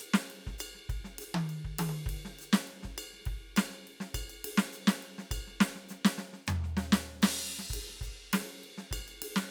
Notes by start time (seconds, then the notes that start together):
0.01 ride
0.14 snare
0.30 ride
0.47 kick, snare
0.58 hi-hat pedal, ride bell
0.75 snare
0.89 kick, ride bell
0.96 kick
0.99 kick
1.04 snare
1.18 hi-hat pedal, ride
1.34 high tom
1.49 ride bell
1.64 kick
1.78 hi-hat pedal, high tom, ride
1.89 high tom
2.06 kick, ride
2.16 kick
2.25 snare
2.39 hi-hat pedal, ride bell
2.53 snare
2.67 ride
2.83 kick, snare
2.98 hi-hat pedal, ride bell
3.13 snare
3.21 snare
3.26 kick, ride
3.33 kick
3.56 snare, hi-hat pedal, ride bell
3.70 snare
3.87 ride
4.00 snare
4.14 kick, hi-hat pedal, ride bell
4.23 kick
4.30 ride bell
4.44 ride
4.58 snare
4.63 cross-stick
4.73 hi-hat pedal, ride
4.87 snare
4.94 snare
5.02 ride
5.18 snare
5.31 kick, hi-hat pedal, ride bell
5.37 kick
5.40 kick
5.47 snare
5.60 snare
5.75 snare
5.89 snare, hi-hat pedal
6.05 snare
6.17 snare, hi-hat pedal
6.33 snare
6.47 hi-hat pedal, floor tom
6.63 snare
6.77 snare
6.81 hi-hat pedal
6.92 snare
7.22 snare, crash
7.29 cross-stick
7.59 snare
7.69 kick, hi-hat pedal
7.74 kick, ride
7.89 snare
7.92 snare
8.01 kick, hi-hat pedal, ride
8.07 kick
8.33 snare, hi-hat pedal, ride
8.42 snare
8.62 hi-hat pedal, ride
8.78 snare
8.91 kick, snare, hi-hat pedal, ride bell
8.99 kick, snare
9.03 snare
9.06 snare, ride bell
9.08 snare
9.22 ride
9.36 snare